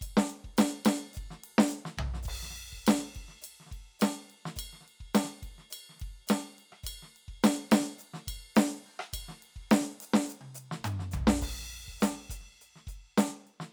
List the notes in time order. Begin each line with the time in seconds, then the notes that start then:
0.01 kick, hi-hat pedal, ride bell
0.07 kick
0.10 kick
0.17 snare
0.30 ride
0.44 kick
0.57 snare, hi-hat pedal, ride bell
0.85 snare, ride bell
1.13 kick, hi-hat pedal, ride
1.23 kick
1.26 kick
1.30 snare
1.38 kick
1.43 ride
1.58 snare
1.68 hi-hat pedal, ride
1.85 snare
1.97 kick, floor tom
2.14 snare
2.23 kick, hi-hat pedal
2.27 crash
2.32 kick
2.35 kick
2.42 snare
2.50 snare
2.57 ride
2.72 kick
2.86 snare, hi-hat pedal, ride bell
2.97 snare
3.15 kick, ride
3.28 snare
3.41 hi-hat pedal, ride bell
3.60 snare
3.66 snare
3.71 kick, ride
3.99 snare, hi-hat pedal, ride bell
4.30 ride
4.45 snare
4.56 kick, hi-hat pedal, ride bell
4.73 snare
4.80 snare
4.88 ride
5.00 kick
5.14 snare, hi-hat pedal, ride bell
5.24 snare
5.42 kick, ride
5.48 kick
5.58 snare
5.70 hi-hat pedal, ride bell
5.89 snare
5.96 snare, ride
6.01 kick
6.07 kick
6.11 kick
6.27 snare, hi-hat pedal, ride bell
6.41 cross-stick
6.58 ride
6.72 cross-stick
6.83 kick, hi-hat pedal, ride bell
6.89 kick
7.02 snare
7.16 ride
7.28 kick
7.43 snare, hi-hat pedal, ride bell
7.71 snare, ride bell
7.80 snare
7.98 hi-hat pedal, ride
8.13 snare
8.27 kick, ride bell
8.33 kick
8.37 kick
8.55 snare, hi-hat pedal, ride
8.86 ride
8.99 cross-stick
9.13 kick, hi-hat pedal, ride bell
9.19 kick
9.22 kick
9.28 snare
9.42 ride
9.56 kick
9.71 snare, hi-hat pedal, ride
9.80 snare
10.00 hi-hat pedal, ride
10.13 snare
10.26 hi-hat pedal, ride
10.41 high tom
10.54 hi-hat pedal
10.71 snare
10.80 kick
10.84 hi-hat pedal, mid tom
10.99 snare
11.11 kick, floor tom, hi-hat pedal
11.23 kick
11.27 snare
11.41 kick, hi-hat pedal, crash
11.51 kick
11.61 snare
11.88 kick
12.00 closed hi-hat, snare, hi-hat pedal
12.12 snare
12.29 closed hi-hat, kick
12.35 kick
12.40 snare
12.61 closed hi-hat
12.75 snare
12.87 closed hi-hat, kick
13.17 closed hi-hat, snare
13.28 snare
13.47 closed hi-hat
13.60 snare